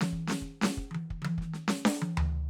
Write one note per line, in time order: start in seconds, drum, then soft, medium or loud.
0.01 snare medium
0.01 high tom loud
0.13 kick soft
0.28 snare medium
0.30 snare loud
0.42 kick soft
0.61 snare loud
0.63 snare loud
0.77 kick medium
0.91 high tom medium
0.94 high tom loud
1.10 kick soft
1.22 high tom loud
1.25 high tom loud
1.38 kick soft
1.38 snare soft
1.54 snare soft
1.68 snare loud
1.85 snare loud
2.02 high tom loud
2.17 floor tom loud